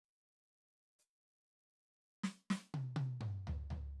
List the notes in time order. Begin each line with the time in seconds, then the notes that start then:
0.99 hi-hat pedal
2.24 snare
2.50 snare
2.74 high tom
2.96 high tom
3.21 mid tom
3.47 floor tom
3.70 floor tom